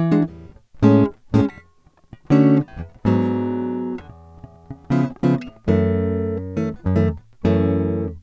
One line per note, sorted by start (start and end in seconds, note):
0.01 0.29 E3
0.13 0.29 G#3
0.13 0.29 D4
0.13 0.28 F#4
0.84 1.08 A2
0.84 1.14 G#3
0.84 1.13 C#4
0.84 1.17 E4
1.35 1.47 A2
1.35 1.52 G#3
1.35 1.51 C#4
1.35 1.51 E4
2.32 2.67 D3
2.32 2.66 A3
2.32 2.65 C#4
2.32 2.66 F#4
3.06 3.96 G#2
3.06 4.00 F#3
3.06 4.02 B3
3.06 3.86 D4
4.92 5.10 C#3
4.92 5.10 F3
4.92 5.13 B3
4.92 5.13 E4
5.25 5.42 C#3
5.25 5.42 F3
5.25 5.43 B3
5.25 5.41 E4
5.69 6.74 F#2
5.69 6.17 E3
5.69 6.44 A3
5.69 6.16 C#4
6.58 6.80 E3
6.58 6.80 A3
6.58 6.74 C#4
6.88 7.14 F#2
6.97 7.17 E3
6.97 7.20 A3
6.97 7.17 C#4
7.46 8.12 F#2
7.46 8.23 E3
7.46 8.16 A3
7.46 8.13 C#4